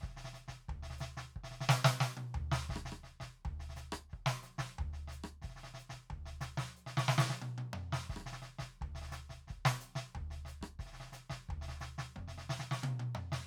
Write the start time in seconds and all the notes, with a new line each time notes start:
0.01 kick, snare
0.08 snare
0.14 snare
0.17 snare
0.24 snare
0.33 snare, hi-hat pedal
0.48 kick, snare
0.69 kick, floor tom
0.83 snare
0.90 snare
0.98 snare, hi-hat pedal
1.17 snare
1.36 kick
1.44 snare
1.51 snare
1.61 snare
1.69 snare
1.85 snare
2.00 snare
2.17 high tom
2.34 floor tom
2.52 snare
2.69 kick, snare
2.76 cross-stick
2.80 kick, cross-stick
2.85 snare
2.92 cross-stick
3.04 snare
3.20 kick, snare
3.45 kick, floor tom
3.60 snare
3.69 snare
3.76 snare, hi-hat pedal
3.92 kick, cross-stick
4.09 snare
4.13 kick
4.26 snare
4.43 snare, hi-hat pedal
4.58 kick, snare
4.79 kick, floor tom
4.93 snare
5.08 snare
5.12 hi-hat pedal
5.24 kick, cross-stick
5.42 kick, snare
5.49 snare
5.55 snare
5.63 snare
5.74 snare
5.79 hi-hat pedal
5.89 kick, snare
6.10 kick, floor tom
6.26 snare
6.41 snare, hi-hat pedal
6.57 snare
6.75 snare, hi-hat pedal
6.87 snare
6.97 snare
7.08 snare
7.18 snare
7.30 snare
7.42 high tom
7.58 high tom
7.73 mid tom
7.93 snare
8.10 kick, snare
8.16 cross-stick
8.20 cross-stick
8.26 snare
8.33 snare
8.41 snare, hi-hat pedal
8.59 kick, snare
8.81 kick, floor tom
8.95 snare
9.02 snare
9.08 snare
9.12 snare, hi-hat pedal
9.29 kick, snare
9.47 kick, snare
9.65 snare
9.80 snare, hi-hat pedal
9.95 kick, snare
10.15 kick, floor tom
10.30 snare
10.45 snare, hi-hat pedal
10.61 kick, cross-stick
10.79 kick, snare
10.86 snare
10.91 snare
10.93 snare
11.00 snare
11.06 snare
11.12 snare, hi-hat pedal
11.30 kick, snare
11.49 kick, floor tom
11.61 snare
11.68 snare
11.75 snare
11.80 snare, hi-hat pedal
11.98 snare
12.16 kick, mid tom
12.28 snare
12.49 snare
12.59 snare
12.71 snare
12.83 high tom
13.00 high tom
13.15 mid tom
13.32 snare